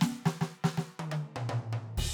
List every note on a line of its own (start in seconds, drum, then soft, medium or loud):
0.01 snare loud
0.26 snare loud
0.41 snare medium
0.64 snare loud
0.77 snare medium
0.99 high tom loud
1.11 high tom medium
1.36 mid tom loud
1.49 mid tom loud
1.73 mid tom loud
1.97 kick medium
1.97 crash loud